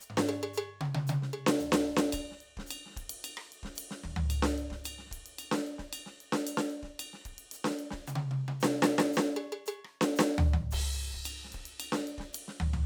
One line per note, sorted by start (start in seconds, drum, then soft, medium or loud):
0.01 hi-hat pedal medium
0.10 mid tom medium
0.18 snare loud
0.29 percussion loud
0.43 percussion loud
0.54 hi-hat pedal medium
0.58 percussion loud
0.81 high tom loud
0.86 cross-stick soft
0.95 high tom loud
1.07 hi-hat pedal medium
1.07 high tom loud
1.23 snare soft
1.34 percussion medium
1.47 snare loud
1.60 floor tom medium
1.60 hi-hat pedal medium
1.72 snare loud
1.89 kick soft
1.97 snare loud
2.12 kick soft
2.12 hi-hat pedal medium
2.12 ride bell loud
2.26 kick soft
2.31 snare soft
2.41 ride soft
2.57 kick soft
2.57 snare medium
2.63 kick soft
2.67 hi-hat pedal medium
2.71 ride bell loud
2.86 snare soft
2.90 snare soft
2.93 snare soft
2.96 kick soft
2.96 snare soft
2.96 ride medium
3.03 kick soft
3.10 ride loud
3.25 hi-hat pedal medium
3.25 ride bell loud
3.37 cross-stick medium
3.52 ride medium
3.63 kick soft
3.63 snare medium
3.76 hi-hat pedal medium
3.76 ride loud
3.91 snare medium
4.04 kick soft
4.04 floor tom medium
4.17 floor tom loud
4.30 hi-hat pedal medium
4.30 ride bell loud
4.43 snare loud
4.58 ride soft
4.70 kick soft
4.70 snare soft
4.76 kick soft
4.85 hi-hat pedal medium
4.85 ride bell loud
4.99 snare soft
5.07 snare soft
5.12 kick soft
5.12 ride medium
5.26 ride medium
5.39 hi-hat pedal medium
5.39 ride bell loud
5.52 snare loud
5.58 snare soft
5.67 ride soft
5.79 kick soft
5.79 snare soft
5.93 hi-hat pedal medium
5.93 ride bell loud
6.06 snare soft
6.21 ride medium
6.33 snare loud
6.47 hi-hat pedal medium
6.47 ride bell loud
6.58 snare medium
6.70 ride soft
6.83 kick soft
6.83 snare soft
7.00 hi-hat pedal medium
7.00 ride bell loud
7.14 snare soft
7.22 kick soft
7.22 cross-stick soft
7.22 ride medium
7.32 snare soft
7.35 snare soft
7.35 ride medium
7.52 hi-hat pedal medium
7.52 ride medium
7.65 snare medium
7.71 snare soft
7.79 ride medium
7.91 kick soft
7.91 snare medium
8.07 hi-hat pedal medium
8.07 high tom medium
8.16 high tom loud
8.31 high tom loud
8.48 high tom loud
8.61 snare loud
8.61 hi-hat pedal medium
8.83 snare loud
8.99 snare loud
9.13 hi-hat pedal medium
9.17 snare loud
9.37 percussion loud
9.53 percussion medium
9.66 hi-hat pedal medium
9.66 percussion loud
9.85 cross-stick medium
10.01 snare loud
10.16 snare loud
10.16 hi-hat pedal medium
10.39 floor tom loud
10.54 floor tom loud
10.71 kick soft
10.71 hi-hat pedal medium
10.71 crash loud
10.79 kick soft
11.14 kick soft
11.14 snare soft
11.25 hi-hat pedal medium
11.25 ride bell loud
11.45 snare soft
11.51 snare soft
11.51 ride medium
11.54 kick soft
11.54 snare soft
11.60 kick soft
11.66 ride medium
11.80 hi-hat pedal medium
11.80 ride bell loud
11.93 snare medium
11.98 snare soft
12.08 ride medium
12.18 kick soft
12.18 snare soft
12.25 kick soft
12.33 hi-hat pedal medium
12.33 ride loud
12.48 snare medium
12.60 kick soft
12.60 floor tom loud
12.74 floor tom loud